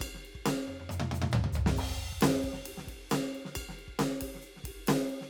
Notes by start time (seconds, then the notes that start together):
0.01 kick, hi-hat pedal, ride bell
0.08 kick
0.15 snare
0.26 ride
0.36 kick
0.47 snare, hi-hat pedal, ride bell
0.54 snare
0.68 mid tom
0.80 mid tom
0.90 hi-hat pedal, mid tom
1.01 mid tom
1.12 hi-hat pedal, mid tom
1.23 mid tom
1.32 hi-hat pedal, floor tom
1.45 floor tom
1.53 kick, hi-hat pedal, floor tom
1.67 snare
1.77 kick, hi-hat pedal, crash
1.90 snare
2.13 kick
2.22 snare, hi-hat pedal, ride
2.30 snare
2.44 kick, ride
2.51 kick, snare
2.66 hi-hat pedal, ride
2.78 snare
2.85 kick, snare
2.89 ride
2.94 kick
3.10 snare, hi-hat pedal, ride bell
3.36 ride
3.46 snare
3.56 kick, hi-hat pedal, ride bell
3.64 kick
3.70 snare
3.75 snare
3.80 ride
3.88 kick
4.00 snare, hi-hat pedal, ride bell
4.11 snare
4.22 kick, ride
4.28 kick
4.35 snare
4.42 hi-hat pedal, ride
4.57 snare
4.65 kick, ride
4.71 kick
4.87 snare, hi-hat pedal, ride
5.10 ride
5.22 snare